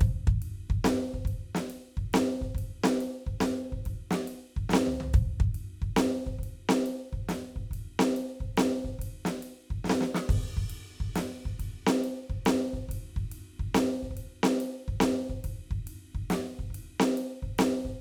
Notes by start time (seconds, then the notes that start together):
0.01 kick, ride
0.28 kick
0.42 ride
0.70 kick
0.85 snare, ride
1.14 kick
1.25 kick, ride
1.55 snare
1.70 ride
1.97 kick
2.14 snare, ride
2.42 kick
2.55 kick, ride
2.84 snare
3.01 ride
3.27 kick
3.35 kick
3.41 snare, ride
3.73 kick
3.86 kick, ride
4.11 snare
4.28 ride
4.57 kick
4.70 snare
4.74 snare
4.87 floor tom
5.01 floor tom
5.14 kick, ride
5.40 kick
5.55 ride
5.82 kick
5.97 snare, ride
6.27 kick
6.39 kick
6.44 ride
6.69 snare
6.86 ride
7.13 kick
7.22 kick
7.29 snare, ride
7.56 kick
7.71 kick, ride
8.00 snare
8.17 ride
8.41 kick
8.58 snare, ride
8.85 kick
8.99 kick, ride
9.26 snare
9.43 ride
9.71 kick
9.85 snare
9.90 snare
10.01 snare
10.15 snare
10.29 kick, crash
10.57 kick
10.70 ride
11.01 kick
11.16 snare, ride
11.46 kick
11.60 kick, ride
11.87 snare
12.04 ride
12.30 kick
12.46 snare, ride
12.74 kick
12.89 kick, ride
13.17 kick
13.32 ride
13.60 kick
13.75 snare, ride
14.03 kick
14.11 kick
14.17 ride
14.44 snare
14.61 ride
14.88 kick
15.01 snare, ride
15.30 kick
15.45 kick, ride
15.71 kick
15.88 ride
16.15 kick
16.31 snare, ride
16.59 kick
16.71 kick
16.75 ride
17.00 snare
17.18 ride
17.43 kick
17.59 snare, ride
17.85 kick